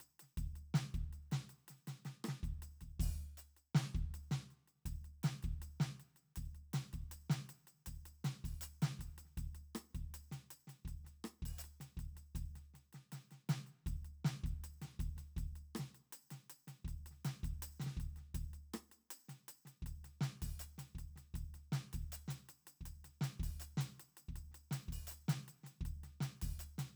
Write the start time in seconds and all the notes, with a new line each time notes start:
0.01 percussion
0.20 snare, percussion
0.38 kick, percussion
0.56 percussion
0.75 snare, percussion
0.95 kick, percussion
1.13 percussion
1.32 snare, percussion
1.50 percussion
1.69 snare, percussion
1.88 snare, percussion
2.06 snare, percussion
2.25 cross-stick, percussion
2.29 snare
2.44 kick, percussion
2.63 percussion
2.82 kick, percussion
3.00 kick, percussion
3.38 percussion
3.40 percussion
3.57 percussion
3.75 snare, percussion
3.95 kick, percussion
4.15 percussion
4.32 snare, percussion
4.51 percussion
4.68 percussion
4.86 kick, percussion
5.05 percussion
5.24 snare, percussion
5.43 kick, percussion
5.62 percussion
5.81 snare, percussion
6.00 percussion
6.17 percussion
6.37 kick, percussion
6.55 percussion
6.74 snare, percussion
6.94 kick, percussion
7.12 percussion
7.30 snare, percussion
7.50 percussion
7.68 percussion
7.87 kick, percussion
8.06 percussion
8.25 snare, percussion
8.45 kick, percussion
8.62 percussion
8.64 percussion
8.83 snare, percussion
9.00 kick, percussion
9.19 percussion
9.26 snare
9.38 kick, percussion
9.55 percussion
9.76 cross-stick, percussion
9.95 kick, percussion
10.15 percussion
10.32 snare, percussion
10.51 percussion
10.68 snare, percussion
10.86 kick, percussion
11.05 snare, percussion
11.25 cross-stick, percussion
11.43 kick, percussion
11.59 percussion
11.65 percussion
11.81 snare, percussion
11.98 kick, percussion
12.16 snare, percussion
12.36 kick, percussion
12.56 snare, percussion
12.75 snare, percussion
12.93 snare, percussion
13.13 snare, percussion
13.32 snare, percussion
13.50 snare, percussion
13.67 percussion
13.87 kick, percussion
14.05 percussion
14.25 snare, percussion
14.44 kick, percussion
14.65 percussion
14.82 snare, percussion
14.86 snare
14.98 kick, snare, percussion
15.18 snare, percussion
15.37 kick, percussion
15.56 percussion
15.76 cross-stick, percussion
15.80 snare
15.95 percussion
16.13 percussion
16.31 snare, percussion
16.50 percussion
16.68 snare, percussion
16.85 kick, percussion
17.07 percussion
17.12 snare
17.25 snare, percussion
17.44 kick, percussion
17.63 percussion
17.80 snare, percussion
17.84 snare
17.87 snare
17.98 kick, percussion
18.17 snare, percussion
18.35 kick, percussion
18.54 percussion
18.74 cross-stick, percussion
18.92 percussion
19.11 percussion
19.29 snare, percussion
19.49 percussion
19.66 snare, percussion
19.83 kick
19.87 percussion
20.05 snare, percussion
20.22 snare, percussion
20.43 kick, percussion
20.60 percussion
20.62 percussion
20.79 snare, percussion
20.96 kick, percussion
21.17 snare, percussion
21.35 kick, percussion
21.55 snare, percussion
21.73 snare, percussion
21.94 kick, percussion
22.13 percussion
22.29 snare, percussion
22.50 percussion
22.66 snare, percussion
22.82 kick
22.86 percussion
23.05 snare, percussion
23.22 snare, percussion
23.40 kick, percussion
23.60 percussion
23.62 percussion
23.78 snare, percussion
24.00 percussion
24.18 percussion
24.29 kick
24.36 percussion
24.52 snare, percussion
24.72 snare, percussion
24.89 kick
24.93 percussion
25.08 percussion
25.12 percussion
25.29 snare, percussion
25.49 percussion
25.64 snare, percussion
25.82 kick
25.86 percussion
26.04 snare, percussion
26.21 snare, percussion
26.42 kick, percussion
26.60 percussion
26.79 snare, percussion